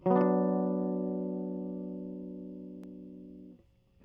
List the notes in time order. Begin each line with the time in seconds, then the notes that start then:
0.06 F#3
0.11 B3
0.16 D4
0.21 F#4